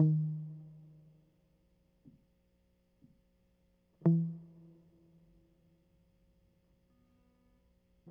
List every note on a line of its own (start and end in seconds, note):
0.00 1.12 D#3
4.06 4.67 E3
4.06 4.41 E3